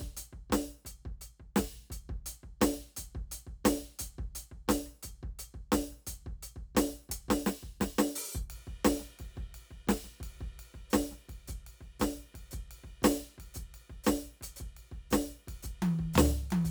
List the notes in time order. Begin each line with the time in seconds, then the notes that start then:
0.01 kick
0.17 closed hi-hat
0.33 kick
0.50 closed hi-hat, kick, snare
0.85 closed hi-hat, kick
1.05 kick
1.21 closed hi-hat
1.40 kick
1.56 closed hi-hat, kick, snare
1.90 closed hi-hat, kick
2.09 kick
2.26 closed hi-hat
2.43 kick
2.61 closed hi-hat, kick, snare
2.97 closed hi-hat, kick
3.15 kick
3.32 closed hi-hat
3.47 kick
3.65 closed hi-hat, kick, snare
3.99 closed hi-hat, kick
4.18 kick
4.35 closed hi-hat
4.52 kick
4.68 closed hi-hat, kick, snare
4.86 cross-stick
5.03 closed hi-hat, kick
5.23 kick
5.39 closed hi-hat
5.54 kick
5.72 closed hi-hat, kick, snare
5.91 snare
6.07 closed hi-hat, kick
6.26 kick
6.43 closed hi-hat
6.56 kick
6.75 closed hi-hat, kick, snare
6.95 snare
7.09 kick, closed hi-hat
7.28 kick, snare
7.46 snare
7.63 kick
7.81 kick, snare
7.99 snare
8.16 open hi-hat
8.34 kick, hi-hat pedal
8.50 ride
8.67 kick
8.85 kick, snare, ride
9.00 snare
9.19 kick, ride
9.36 kick, snare
9.54 ride
9.71 kick
9.88 kick, snare, ride
10.04 snare
10.20 kick, ride
10.41 kick
10.59 ride
10.74 kick
10.90 kick, snare, hi-hat pedal
10.95 ride
11.11 snare
11.29 kick, ride
11.48 kick, hi-hat pedal
11.67 ride
11.81 kick
12.00 kick, snare, hi-hat pedal, ride
12.34 kick, ride
12.51 kick, hi-hat pedal
12.71 ride
12.84 kick
13.02 kick, snare, hi-hat pedal, ride
13.38 kick, ride
13.54 kick, hi-hat pedal
13.74 ride
13.90 kick
14.04 kick, snare, hi-hat pedal
14.08 ride
14.41 closed hi-hat, kick, ride
14.56 hi-hat pedal
14.60 kick
14.77 ride
14.92 kick
15.11 kick, snare, hi-hat pedal, ride
15.48 kick, ride
15.63 kick, hi-hat pedal
15.82 high tom, ride
15.99 kick
16.14 floor tom, hi-hat pedal
16.18 snare
16.51 high tom, ride
16.65 kick, hi-hat pedal